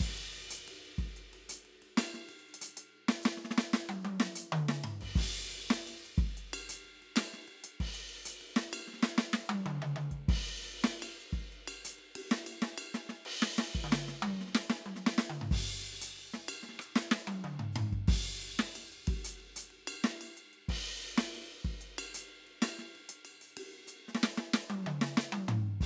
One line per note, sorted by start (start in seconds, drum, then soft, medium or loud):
0.01 kick medium
0.01 crash medium
0.17 closed hi-hat medium
0.33 ride soft
0.51 closed hi-hat loud
0.68 ride medium
0.85 closed hi-hat soft
0.99 kick medium
0.99 ride soft
1.16 closed hi-hat medium
1.33 cross-stick soft
1.33 ride medium
1.33 floor tom soft
1.49 closed hi-hat loud
1.65 ride soft
1.82 ride medium
1.98 snare loud
1.98 ride bell loud
2.14 snare soft
2.29 ride medium
2.39 closed hi-hat soft
2.49 closed hi-hat soft
2.54 closed hi-hat loud
2.62 closed hi-hat loud
2.77 closed hi-hat loud
3.09 snare loud
3.22 snare loud
3.22 hi-hat pedal loud
3.37 snare soft
3.45 snare medium
3.51 snare medium
3.58 snare loud
3.74 snare loud
3.89 high tom loud
4.05 high tom loud
4.20 snare loud
4.36 closed hi-hat loud
4.52 mid tom loud
4.69 snare loud
4.84 floor tom loud
5.01 kick soft
5.01 crash medium
5.16 kick medium
5.16 ride loud
5.22 hi-hat pedal soft
5.36 closed hi-hat soft
5.53 ride soft
5.70 snare loud
5.87 ride bell medium
6.06 closed hi-hat medium
6.18 kick medium
6.18 ride soft
6.37 closed hi-hat medium
6.53 ride bell loud
6.69 closed hi-hat loud
6.85 ride soft
7.02 ride soft
7.16 snare loud
7.16 ride bell loud
7.34 snare soft
7.48 ride medium
7.64 closed hi-hat loud
7.80 kick medium
7.80 crash medium
7.94 closed hi-hat medium
8.10 ride bell soft
8.26 closed hi-hat loud
8.41 ride medium
8.56 snare loud
8.73 ride bell loud
8.88 snare soft
8.94 snare soft
8.99 snare soft
9.03 snare loud
9.18 snare loud
9.33 snare loud
9.49 high tom loud
9.66 mid tom loud
9.82 mid tom medium
9.96 mid tom medium
10.11 kick soft
10.11 closed hi-hat soft
10.29 kick medium
10.29 crash loud
10.48 closed hi-hat soft
10.64 ride medium
10.84 snare loud
11.02 ride bell loud
11.21 closed hi-hat medium
11.33 kick medium
11.33 ride soft
11.52 closed hi-hat soft
11.68 ride bell loud
11.85 closed hi-hat loud
11.99 ride soft
12.16 ride loud
12.31 snare loud
12.47 ride bell medium
12.62 snare loud
12.78 ride bell loud
12.94 snare medium
13.09 snare medium
13.25 crash loud
13.42 snare loud
13.58 snare loud
13.75 kick medium
13.84 mid tom medium
13.92 snare loud
14.08 snare medium
14.23 high tom loud
14.41 snare soft
14.47 snare soft
14.53 snare soft
14.55 snare loud
14.70 snare loud
14.86 high tom medium
14.96 snare soft
15.07 snare loud
15.18 snare loud
15.30 mid tom medium
15.42 floor tom medium
15.51 kick medium
15.51 ride loud
15.72 closed hi-hat soft
15.87 ride soft
16.02 closed hi-hat loud
16.19 ride bell soft
16.34 snare medium
16.49 ride bell loud
16.63 snare soft
16.69 snare soft
16.74 snare soft
16.79 cross-stick medium
16.79 hi-hat pedal loud
16.96 snare loud
17.11 snare loud
17.27 high tom loud
17.44 mid tom medium
17.60 floor tom loud
17.73 hi-hat pedal soft
17.73 floor tom loud
17.93 kick soft
17.93 hi-hat pedal soft
18.08 kick medium
18.08 ride loud
18.25 closed hi-hat soft
18.32 closed hi-hat soft
18.42 ride medium
18.59 snare loud
18.76 ride bell medium
18.92 closed hi-hat medium
19.07 kick medium
19.07 ride loud
19.25 closed hi-hat loud
19.40 ride soft
19.56 closed hi-hat loud
19.71 ride medium
19.88 ride bell loud
20.04 snare loud
20.21 ride bell medium
20.37 closed hi-hat medium
20.53 closed hi-hat soft
20.69 kick medium
20.69 crash loud
20.85 closed hi-hat medium
20.99 ride soft
21.18 snare loud
21.35 cross-stick soft
21.35 ride medium
21.35 floor tom soft
21.51 closed hi-hat soft
21.65 kick medium
21.65 ride soft
21.81 closed hi-hat medium
21.99 ride bell loud
22.14 closed hi-hat loud
22.29 ride soft
22.47 ride soft
22.62 snare loud
22.62 ride bell loud
22.79 snare soft
22.95 ride soft
23.09 closed hi-hat loud
23.25 ride bell medium
23.41 open hi-hat medium
23.57 ride loud
23.87 hi-hat pedal loud
24.08 snare soft
24.15 snare medium
24.23 snare loud
24.38 snare medium
24.54 snare loud
24.54 hi-hat pedal medium
24.70 high tom loud
24.86 mid tom loud
25.01 snare loud
25.17 snare loud
25.17 hi-hat pedal loud
25.33 high tom loud
25.49 floor tom loud
25.81 kick medium
25.81 ride loud